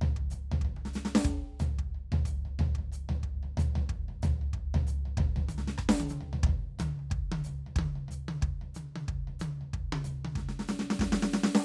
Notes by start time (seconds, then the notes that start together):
0.01 floor tom
0.16 kick, floor tom
0.30 floor tom, hi-hat pedal
0.51 floor tom
0.61 kick, floor tom
0.76 high tom
0.85 kick, snare
0.93 snare, hi-hat pedal
1.05 snare
1.15 snare
1.24 kick, floor tom
1.59 floor tom, hi-hat pedal
1.78 kick
1.94 floor tom
2.12 floor tom
2.25 kick, floor tom, hi-hat pedal
2.45 floor tom
2.59 floor tom
2.75 kick, floor tom
2.92 floor tom, hi-hat pedal
3.09 floor tom
3.23 kick, floor tom
3.43 floor tom
3.57 floor tom, hi-hat pedal
3.75 floor tom
3.89 kick, floor tom
4.08 floor tom
4.22 floor tom, hi-hat pedal
4.41 floor tom
4.53 kick, floor tom
4.74 floor tom
4.87 floor tom, hi-hat pedal
5.05 floor tom
5.17 kick, floor tom
5.36 floor tom
5.48 hi-hat pedal, high tom
5.58 snare
5.67 snare
5.78 kick, cross-stick
5.89 snare
6.00 high tom
6.09 hi-hat pedal, high tom
6.21 floor tom
6.33 floor tom
6.43 kick, floor tom
6.79 floor tom, hi-hat pedal, high tom
6.99 high tom
7.10 kick, floor tom
7.32 high tom
7.44 floor tom, hi-hat pedal
7.66 floor tom
7.76 kick, high tom
7.93 kick, floor tom
8.08 floor tom, hi-hat pedal
8.28 high tom
8.41 kick, floor tom
8.61 floor tom
8.74 hi-hat pedal, high tom
8.96 high tom
9.08 kick, floor tom
9.27 floor tom
9.39 hi-hat pedal, high tom
9.47 kick
9.61 floor tom
9.73 kick, floor tom
9.92 high tom
10.04 floor tom, hi-hat pedal
10.25 high tom
10.35 kick, snare
10.49 snare
10.59 snare
10.67 snare, hi-hat pedal
10.79 snare
10.90 snare
10.99 kick, snare
11.12 snare
11.22 snare
11.32 snare, hi-hat pedal
11.43 snare
11.55 snare